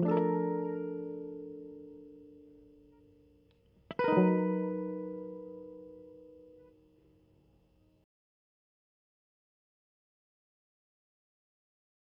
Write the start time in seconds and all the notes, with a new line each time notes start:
0.00 F3
0.06 D4 A4
0.12 A#4
3.99 B4
4.04 D#4 A#4
4.18 F#3